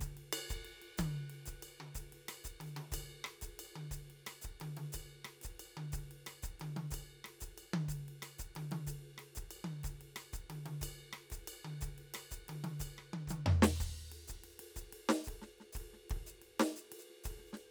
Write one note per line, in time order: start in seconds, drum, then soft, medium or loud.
0.01 kick soft
0.01 hi-hat pedal medium
0.01 ride soft
0.17 ride soft
0.33 cross-stick medium
0.33 ride bell loud
0.50 kick soft
0.50 hi-hat pedal medium
0.65 ride soft
0.82 ride soft
0.98 kick soft
0.98 hi-hat pedal medium
0.98 high tom loud
0.98 ride bell medium
1.30 ride soft
1.46 kick soft
1.46 hi-hat pedal medium
1.46 ride soft
1.63 ride bell medium
1.68 hi-hat pedal soft
1.81 high tom soft
1.95 kick soft
1.95 hi-hat pedal medium
1.95 ride soft
2.13 ride soft
2.29 cross-stick medium
2.29 ride bell medium
2.45 kick soft
2.45 hi-hat pedal medium
2.61 high tom medium
2.61 ride soft
2.66 hi-hat pedal soft
2.77 high tom medium
2.77 ride soft
2.92 kick soft
2.92 hi-hat pedal medium
2.92 ride bell medium
3.25 cross-stick medium
3.25 ride soft
3.42 kick soft
3.42 hi-hat pedal medium
3.42 ride soft
3.60 ride bell medium
3.64 hi-hat pedal soft
3.76 high tom medium
3.91 kick soft
3.91 hi-hat pedal medium
3.91 ride soft
4.11 ride soft
4.27 cross-stick medium
4.27 ride bell medium
4.42 kick soft
4.42 hi-hat pedal medium
4.61 high tom medium
4.61 ride soft
4.77 high tom medium
4.77 ride soft
4.93 kick soft
4.93 hi-hat pedal medium
4.93 ride bell medium
5.25 cross-stick medium
5.25 ride soft
5.42 kick soft
5.42 hi-hat pedal medium
5.42 ride soft
5.60 ride bell medium
5.77 high tom medium
5.93 kick soft
5.93 hi-hat pedal medium
5.93 ride soft
6.12 ride soft
6.27 cross-stick medium
6.27 ride bell medium
6.43 kick soft
6.43 hi-hat pedal medium
6.60 high tom medium
6.60 ride soft
6.77 high tom medium
6.77 ride soft
6.91 kick soft
6.91 hi-hat pedal medium
6.91 ride bell medium
7.25 cross-stick medium
7.25 ride soft
7.41 kick soft
7.41 hi-hat pedal medium
7.41 ride soft
7.58 ride bell soft
7.74 high tom loud
7.89 kick soft
7.89 hi-hat pedal medium
7.89 ride soft
8.09 ride soft
8.23 cross-stick medium
8.23 ride bell medium
8.39 kick soft
8.39 hi-hat pedal medium
8.56 high tom medium
8.56 ride soft
8.61 hi-hat pedal soft
8.72 high tom medium
8.72 ride soft
8.87 kick soft
8.87 hi-hat pedal medium
8.87 ride medium
9.18 cross-stick medium
9.18 ride soft
9.36 kick soft
9.36 hi-hat pedal medium
9.36 ride soft
9.51 ride bell medium
9.65 high tom medium
9.84 kick soft
9.84 hi-hat pedal medium
9.84 ride soft
10.01 ride soft
10.17 cross-stick medium
10.17 ride bell medium
10.34 kick soft
10.34 hi-hat pedal medium
10.50 high tom medium
10.50 ride soft
10.66 high tom medium
10.66 ride soft
10.82 kick soft
10.82 hi-hat pedal medium
10.82 ride bell medium
11.13 cross-stick medium
11.13 ride soft
11.31 kick soft
11.31 hi-hat pedal medium
11.31 ride soft
11.48 ride bell medium
11.54 hi-hat pedal soft
11.65 high tom medium
11.81 kick soft
11.81 hi-hat pedal medium
11.81 ride soft
11.99 ride soft
12.14 cross-stick medium
12.14 ride bell medium
12.31 kick soft
12.31 hi-hat pedal medium
12.49 high tom medium
12.49 ride medium
12.64 high tom medium
12.64 ride soft
12.80 kick soft
12.80 hi-hat pedal medium
12.80 ride bell medium
12.99 cross-stick soft
13.14 high tom medium
13.28 kick soft
13.28 hi-hat pedal medium
13.28 high tom medium
13.47 floor tom loud
13.63 snare loud
13.76 crash medium
13.80 kick soft
13.80 hi-hat pedal medium
14.12 ride soft
14.28 kick soft
14.28 hi-hat pedal medium
14.44 ride soft
14.50 hi-hat pedal soft
14.60 ride medium
14.76 kick soft
14.76 hi-hat pedal medium
14.93 ride medium
15.09 snare loud
15.24 kick soft
15.24 hi-hat pedal medium
15.29 ride medium
15.42 snare soft
15.59 snare soft
15.59 ride soft
15.73 kick soft
15.73 hi-hat pedal medium
15.77 ride medium
15.94 snare soft
16.10 kick medium
16.10 ride medium
16.27 hi-hat pedal medium
16.42 ride soft
16.60 snare loud
16.60 ride medium
16.76 hi-hat pedal medium
16.92 ride medium
16.99 hi-hat pedal soft
17.10 snare soft
17.24 kick soft
17.24 hi-hat pedal medium
17.24 ride medium
17.39 snare soft
17.47 hi-hat pedal soft
17.53 snare soft
17.58 ride soft